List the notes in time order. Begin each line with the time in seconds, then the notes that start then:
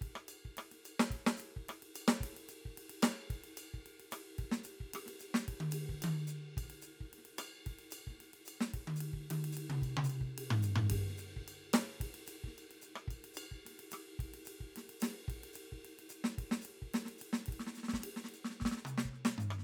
0.01 kick, ride
0.07 kick
0.15 cross-stick
0.28 hi-hat pedal, ride bell
0.45 kick
0.57 cross-stick, ride
0.71 snare, ride
0.85 hi-hat pedal, ride bell
0.99 snare
1.10 kick, ride
1.16 kick
1.26 snare
1.37 hi-hat pedal, ride
1.56 kick
1.69 cross-stick, ride
1.82 ride
1.94 hi-hat pedal, ride bell
2.08 snare
2.20 kick, ride
2.33 snare, ride
2.38 snare
2.48 hi-hat pedal, ride
2.65 kick
2.70 kick
2.77 ride
2.90 ride
3.02 snare, hi-hat pedal, ride bell
3.30 kick, ride
3.44 ride
3.57 hi-hat pedal, ride bell
3.74 kick
3.86 ride
4.00 ride
4.11 cross-stick, hi-hat pedal, ride
4.38 kick, ride
4.44 kick
4.51 snare
4.63 hi-hat pedal, ride
4.80 kick
4.94 cross-stick, ride
5.06 snare, ride
5.19 hi-hat pedal, ride
5.34 snare
5.48 kick, ride
5.60 open hi-hat, high tom
5.71 hi-hat pedal, ride
5.89 kick
5.94 kick
6.02 high tom, ride bell
6.27 hi-hat pedal
6.57 kick, ride bell
6.63 kick
6.70 ride
6.82 hi-hat pedal, ride
7.00 kick
7.13 ride
7.18 snare
7.25 ride
7.38 cross-stick, hi-hat pedal, ride bell
7.65 kick, snare, ride
7.79 ride
7.90 hi-hat pedal, ride bell
8.07 kick, snare
8.14 snare
8.18 snare
8.20 snare, ride
8.33 ride
8.45 hi-hat pedal, ride bell
8.61 snare
8.74 kick, ride
8.79 kick
8.87 high tom
8.96 hi-hat pedal
9.01 ride
9.13 kick
9.19 kick
9.30 high tom, ride
9.44 ride
9.52 hi-hat pedal
9.57 ride
9.70 mid tom
9.82 kick, ride bell
9.87 kick
9.97 mid tom
10.04 hi-hat pedal
10.10 ride bell
10.21 kick
10.38 ride
10.50 floor tom
10.62 hi-hat pedal, ride
10.76 floor tom
10.90 kick, ride
10.98 kick
11.09 snare
11.16 snare, hi-hat pedal
11.19 snare, ride
11.23 snare
11.36 kick, snare
11.41 kick
11.48 ride bell
11.73 snare, hi-hat pedal, ride
12.00 kick, snare, ride
12.05 kick, snare
12.11 snare, ride
12.15 snare
12.26 hi-hat pedal, ride
12.44 kick, snare
12.53 snare
12.56 snare, ride bell
12.71 ride
12.81 hi-hat pedal, ride
12.96 cross-stick
13.08 kick, ride bell
13.13 kick
13.24 ride
13.34 hi-hat pedal, ride bell
13.51 kick
13.65 snare, ride
13.70 snare
13.79 ride
13.91 cross-stick, hi-hat pedal, ride
14.17 kick, snare, ride
14.25 kick
14.32 snare, ride
14.38 snare
14.45 hi-hat pedal, ride
14.60 kick
14.76 snare, ride
14.89 ride
15.00 snare, hi-hat pedal, ride
15.28 kick, ride
15.44 ride
15.53 hi-hat pedal, ride
15.72 kick
15.85 ride
15.99 ride
16.09 hi-hat pedal, ride
16.24 snare
16.38 kick, ride
16.45 kick
16.51 snare
16.61 hi-hat pedal, ride
16.82 kick
16.94 snare, ride
17.05 snare, ride
17.18 hi-hat pedal, ride
17.33 snare
17.46 kick, ride
17.52 kick, ride
17.59 snare
17.67 snare
17.73 snare, hi-hat pedal
17.77 snare
17.83 snare
17.88 snare
17.93 kick, snare
18.00 snare, ride
18.16 snare
18.24 snare
18.29 ride
18.34 hi-hat pedal, ride
18.44 snare
18.50 snare
18.60 kick, snare
18.65 kick, snare
18.71 snare
18.77 snare
18.85 hi-hat pedal, mid tom
18.98 snare
19.05 kick
19.13 snare
19.25 snare
19.38 floor tom, hi-hat pedal
19.50 cross-stick
19.58 snare